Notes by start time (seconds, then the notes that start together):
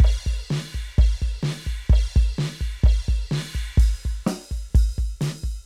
0.01 kick, crash
0.27 kick
0.51 snare, crash
0.75 kick
0.99 kick, crash
1.23 kick
1.44 snare, crash
1.51 snare
1.67 kick
1.90 kick, crash
2.17 kick
2.39 snare, crash
2.62 kick
2.84 kick, crash
3.09 kick
3.32 snare, crash
3.56 kick
3.78 open hi-hat, kick
4.06 kick
4.27 open hi-hat, snare
4.52 kick
4.71 snare
4.75 open hi-hat, kick
4.99 kick
5.22 open hi-hat, snare
5.44 kick